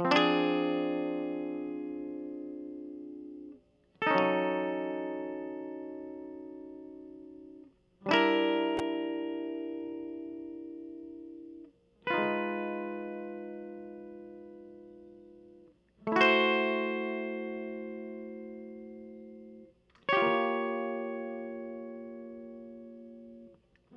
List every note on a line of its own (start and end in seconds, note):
0.00 3.53 F3
0.05 3.62 C4
0.12 3.56 D4
0.16 3.59 G#4
4.02 6.55 A4
4.07 7.68 D#4
4.11 7.72 C#4
4.16 7.67 F#3
8.07 11.63 G3
8.07 11.73 D4
8.11 11.69 E4
8.11 11.70 A#4
12.07 15.69 F4
12.07 15.72 B4
12.14 15.78 D#4
12.18 15.72 G#3
16.08 19.67 A3
16.12 19.73 E4
16.12 19.68 F#4
16.21 19.71 C5
20.09 23.54 C#5
20.13 23.49 G4
20.17 23.57 F4
20.22 23.50 A#3